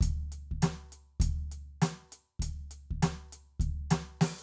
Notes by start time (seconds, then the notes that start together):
0.01 kick, closed hi-hat
0.32 closed hi-hat
0.52 kick
0.62 snare, closed hi-hat
0.92 closed hi-hat
1.20 kick, closed hi-hat
1.52 closed hi-hat
1.82 closed hi-hat, snare
2.12 closed hi-hat
2.40 kick, closed hi-hat
2.71 closed hi-hat
2.91 kick
3.03 snare, closed hi-hat
3.33 closed hi-hat
3.60 kick, closed hi-hat
3.91 snare, closed hi-hat
4.21 snare, open hi-hat